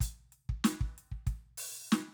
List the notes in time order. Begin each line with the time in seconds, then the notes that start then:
0.01 closed hi-hat, kick
0.33 closed hi-hat
0.50 kick
0.65 closed hi-hat, snare
0.81 kick
0.98 closed hi-hat
1.12 kick
1.27 kick, closed hi-hat
1.58 open hi-hat
1.91 snare, hi-hat pedal